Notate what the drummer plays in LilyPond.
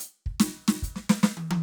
\new DrumStaff \drummode { \time 4/4 \tempo 4 = 144 \tuplet 3/2 { hh8 r8 bd8 <sn hh>8 r8 sn8 <bd hh>8 sn8 sn8 sn8 tommh8 tommh8 } | }